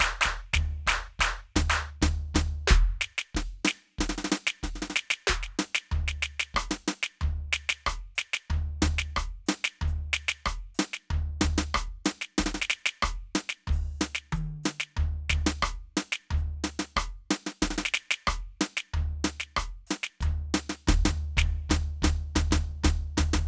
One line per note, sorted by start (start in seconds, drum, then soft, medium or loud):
0.05 kick soft
0.05 percussion loud
0.05 snare loud
0.21 percussion loud
0.21 snare loud
0.25 kick soft
0.53 kick medium
0.53 snare loud
0.53 floor tom loud
0.87 kick soft
0.87 percussion loud
0.87 snare loud
1.19 kick medium
1.19 percussion loud
1.19 snare loud
1.56 kick medium
1.56 snare loud
1.56 floor tom loud
1.69 percussion loud
1.69 snare medium
2.02 kick medium
2.02 snare loud
2.02 floor tom loud
2.34 kick medium
2.34 snare loud
2.34 floor tom loud
2.66 kick soft
2.66 snare loud
2.71 kick loud
3.01 snare loud
3.18 snare medium
3.35 kick medium
3.35 snare medium
3.65 snare loud
3.67 snare loud
3.98 kick medium
3.98 snare loud
4.05 hi-hat pedal soft
4.09 snare medium
4.18 snare medium
4.24 snare medium
4.32 snare loud
4.47 snare loud
4.63 kick soft
4.63 snare medium
4.75 snare soft
4.82 snare medium
4.90 snare medium
4.96 snare loud
5.10 snare loud
5.27 kick medium
5.27 snare loud
5.43 snare medium
5.59 snare loud
5.75 snare loud
5.91 kick medium
5.91 floor tom loud
6.08 snare medium
6.22 snare loud
6.40 snare loud
6.54 kick soft
6.54 cross-stick loud
6.71 snare loud
6.88 snare loud
7.03 snare loud
7.21 kick soft
7.21 floor tom loud
7.53 snare loud
7.53 hi-hat pedal soft
7.69 snare loud
7.86 kick soft
7.86 cross-stick loud
7.86 hi-hat pedal soft
8.15 snare loud
8.15 hi-hat pedal soft
8.33 snare loud
8.50 kick soft
8.50 floor tom loud
8.82 kick soft
8.82 snare loud
8.82 floor tom loud
8.98 snare loud
9.16 kick medium
9.16 cross-stick loud
9.16 hi-hat pedal soft
9.46 snare loud
9.46 hi-hat pedal soft
9.64 snare loud
9.81 kick medium
9.81 floor tom loud
9.87 hi-hat pedal soft
10.13 snare loud
10.13 hi-hat pedal soft
10.28 snare loud
10.45 kick medium
10.45 cross-stick loud
10.45 hi-hat pedal soft
10.74 hi-hat pedal soft
10.79 snare loud
10.93 snare medium
11.10 kick soft
11.10 floor tom loud
11.41 kick soft
11.41 snare loud
11.41 floor tom loud
11.58 snare loud
11.74 kick medium
11.74 cross-stick loud
11.74 hi-hat pedal soft
12.05 snare loud
12.05 hi-hat pedal soft
12.21 snare medium
12.38 kick soft
12.38 snare loud
12.44 snare medium
12.44 hi-hat pedal soft
12.54 snare medium
12.62 snare loud
12.70 snare loud
12.77 hi-hat pedal soft
12.86 snare loud
13.02 kick medium
13.02 cross-stick loud
13.07 hi-hat pedal soft
13.35 snare loud
13.49 snare medium
13.67 kick medium
13.67 floor tom loud
13.72 hi-hat pedal soft
14.01 snare loud
14.15 snare medium
14.32 kick medium
14.32 hi-hat pedal soft
14.32 high tom loud
14.63 snare loud
14.63 hi-hat pedal soft
14.80 snare medium
14.96 kick medium
14.96 floor tom loud
15.29 kick soft
15.29 snare loud
15.29 floor tom loud
15.46 snare loud
15.62 kick medium
15.62 cross-stick loud
15.62 hi-hat pedal soft
15.97 snare loud
16.12 snare loud
16.30 kick soft
16.30 floor tom loud
16.37 hi-hat pedal soft
16.64 snare loud
16.79 snare loud
16.96 kick medium
16.96 cross-stick loud
16.96 hi-hat pedal soft
17.30 snare loud
17.46 snare medium
17.62 kick soft
17.62 snare loud
17.70 snare medium
17.78 snare medium
17.85 snare loud
17.94 snare loud
17.94 hi-hat pedal soft
18.11 snare loud
18.27 kick medium
18.27 cross-stick loud
18.61 snare loud
18.77 snare medium
18.93 kick medium
18.93 floor tom loud
19.24 snare loud
19.40 snare medium
19.56 kick soft
19.56 cross-stick loud
19.56 hi-hat pedal soft
19.87 snare loud
19.87 hi-hat pedal soft
20.03 snare medium
20.21 kick medium
20.21 floor tom loud
20.21 hi-hat pedal medium
20.54 snare loud
20.69 snare medium
20.87 kick loud
20.87 snare loud
20.87 floor tom loud
21.05 kick soft
21.05 snare loud
21.05 floor tom loud
21.37 kick medium
21.37 snare loud
21.37 floor tom loud
21.69 kick medium
21.69 snare loud
21.69 floor tom loud
22.02 kick medium
22.02 snare loud
22.02 floor tom loud
22.35 kick medium
22.35 snare loud
22.35 floor tom loud
22.51 kick medium
22.51 snare loud
22.51 floor tom loud
22.84 kick medium
22.84 snare loud
22.84 floor tom loud
23.17 kick soft
23.17 snare loud
23.17 floor tom loud
23.33 kick medium
23.33 snare loud
23.33 floor tom loud